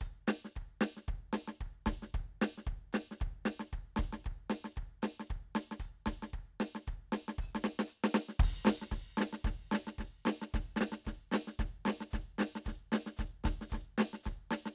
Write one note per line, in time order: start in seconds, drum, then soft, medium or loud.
0.01 closed hi-hat medium
0.01 kick soft
0.28 closed hi-hat medium
0.28 snare medium
0.45 snare soft
0.56 kick soft
0.56 closed hi-hat soft
0.81 snare medium
0.81 closed hi-hat soft
0.97 snare soft
1.08 kick medium
1.08 closed hi-hat soft
1.33 closed hi-hat medium
1.33 snare medium
1.48 snare soft
1.61 kick soft
1.61 closed hi-hat soft
1.86 kick medium
1.86 snare medium
1.86 closed hi-hat medium
2.02 snare soft
2.14 kick medium
2.14 closed hi-hat medium
2.42 closed hi-hat medium
2.42 snare medium
2.58 snare soft
2.67 kick medium
2.67 closed hi-hat soft
2.93 snare medium
2.93 closed hi-hat medium
3.11 snare soft
3.20 kick medium
3.20 closed hi-hat soft
3.46 snare medium
3.46 closed hi-hat medium
3.60 snare soft
3.73 kick soft
3.73 closed hi-hat medium
3.96 kick medium
3.96 snare medium
3.96 closed hi-hat medium
4.13 snare soft
4.25 kick medium
4.25 closed hi-hat soft
4.50 closed hi-hat medium
4.50 snare medium
4.64 snare soft
4.76 kick soft
4.76 closed hi-hat soft
5.02 closed hi-hat medium
5.02 snare medium
5.20 snare soft
5.30 kick medium
5.30 closed hi-hat medium
5.55 closed hi-hat medium
5.55 snare medium
5.71 snare soft
5.80 closed hi-hat soft
5.80 kick soft
6.06 closed hi-hat soft
6.06 kick soft
6.06 snare medium
6.23 snare soft
6.33 kick soft
6.33 closed hi-hat soft
6.60 closed hi-hat medium
6.60 snare medium
6.75 snare soft
6.87 closed hi-hat soft
6.87 kick medium
7.12 closed hi-hat medium
7.12 snare medium
7.28 snare medium
7.38 open hi-hat medium
7.38 kick medium
7.55 snare medium
7.62 snare medium
7.62 hi-hat pedal soft
7.79 snare medium
7.87 hi-hat pedal medium
8.04 snare medium
8.14 snare loud
8.29 snare soft
8.40 kick loud
8.40 crash medium
8.65 snare medium
8.67 snare loud
8.82 snare soft
8.92 kick medium
8.92 snare soft
9.17 snare medium
9.21 snare medium
9.33 snare soft
9.45 kick medium
9.45 snare soft
9.71 snare medium
9.71 hi-hat pedal medium
9.74 snare medium
9.87 snare soft
9.98 kick soft
9.98 snare soft
10.25 snare medium
10.27 snare medium
10.42 snare soft
10.52 kick medium
10.52 snare soft
10.52 hi-hat pedal soft
10.76 snare medium
10.81 snare medium
10.92 snare soft
11.05 kick soft
11.05 snare soft
11.05 hi-hat pedal medium
11.32 snare medium
11.34 snare medium
11.47 snare soft
11.59 kick medium
11.59 snare soft
11.85 snare medium
11.88 snare medium
12.01 snare soft
12.11 kick medium
12.11 snare soft
12.11 hi-hat pedal medium
12.38 snare medium
12.40 snare medium
12.55 snare soft
12.65 kick soft
12.65 snare soft
12.65 hi-hat pedal medium
12.92 snare medium
12.94 snare medium
13.06 snare soft
13.17 kick medium
13.17 snare soft
13.17 hi-hat pedal medium
13.44 kick medium
13.44 snare medium
13.46 snare medium
13.61 snare soft
13.70 kick medium
13.70 snare soft
13.70 hi-hat pedal medium
13.98 snare medium
14.00 snare medium
14.13 snare soft
14.23 kick medium
14.23 snare soft
14.23 hi-hat pedal medium
14.51 snare medium
14.66 snare medium